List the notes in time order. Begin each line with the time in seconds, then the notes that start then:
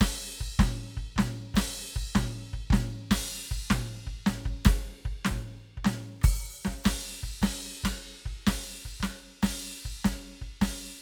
0.00 kick, snare, crash
0.41 kick
0.59 kick, snare, mid tom
0.97 kick
1.16 kick, snare, mid tom
1.54 kick, snare, crash
1.96 kick
2.15 kick, snare, mid tom
2.53 kick
2.70 kick, snare, mid tom
3.11 kick, snare, crash
3.51 kick
3.70 kick, snare, mid tom
4.07 kick
4.26 kick, snare, mid tom
4.45 kick
4.65 kick, snare, ride
5.05 kick
5.25 snare, mid tom
5.31 kick
5.77 kick
5.85 snare, mid tom
5.97 kick
6.19 kick, cross-stick
6.23 open hi-hat, kick, cross-stick
6.65 kick, snare
6.84 kick, snare, crash
7.23 kick
7.42 kick, snare, crash
7.84 kick, snare, ride bell
8.26 kick
8.47 kick, snare, crash
8.85 kick
9.00 kick, snare, ride bell
9.43 kick, snare, crash
9.85 kick
10.05 kick, snare, ride bell
10.42 kick
10.61 kick, snare, crash